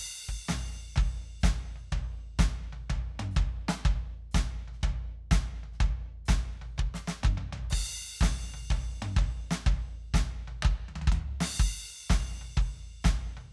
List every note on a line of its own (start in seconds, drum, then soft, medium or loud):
0.29 kick medium
0.45 snare loud
0.45 hi-hat pedal soft
0.49 floor tom loud
0.81 floor tom soft
0.96 kick loud
0.96 floor tom loud
1.41 kick loud
1.41 snare loud
1.41 floor tom loud
1.41 hi-hat pedal soft
1.76 floor tom soft
1.92 kick medium
1.92 floor tom loud
2.39 kick loud
2.39 snare loud
2.39 floor tom loud
2.73 floor tom medium
2.90 kick medium
2.90 floor tom loud
3.20 high tom loud
3.31 hi-hat pedal soft
3.37 kick loud
3.37 floor tom loud
3.69 snare loud
3.85 kick loud
3.85 floor tom loud
4.31 kick loud
4.31 snare loud
4.31 floor tom loud
4.31 hi-hat pedal soft
4.68 floor tom medium
4.73 snare soft
4.78 snare soft
4.83 kick loud
4.83 floor tom loud
5.31 kick loud
5.31 snare loud
5.31 floor tom loud
5.57 snare soft
5.63 floor tom medium
5.73 snare soft
5.78 kick loud
5.78 snare soft
5.78 floor tom loud
6.26 kick loud
6.26 snare loud
6.26 floor tom loud
6.26 hi-hat pedal soft
6.62 floor tom medium
6.78 kick loud
6.78 floor tom medium
6.94 snare medium
7.08 snare loud
7.23 kick loud
7.23 high tom loud
7.38 floor tom medium
7.53 floor tom loud
7.70 kick loud
7.70 crash loud
8.19 kick loud
8.19 snare loud
8.19 floor tom loud
8.19 hi-hat pedal soft
8.54 floor tom medium
8.70 kick loud
8.70 floor tom loud
9.02 high tom loud
9.17 kick loud
9.17 floor tom loud
9.51 snare loud
9.67 kick loud
9.67 floor tom loud
10.14 kick loud
10.14 snare loud
10.14 floor tom loud
10.48 floor tom medium
10.63 kick loud
10.63 floor tom loud
10.89 mid tom medium
10.96 mid tom loud
11.02 mid tom medium
11.07 kick loud
11.12 mid tom loud
11.41 snare loud
11.41 crash loud
11.60 kick loud
12.10 kick loud
12.10 snare loud
12.10 floor tom loud
12.41 floor tom medium
12.57 kick loud
12.57 floor tom loud
13.02 kick loud
13.02 snare loud
13.02 floor tom loud
13.02 hi-hat pedal soft
13.37 floor tom medium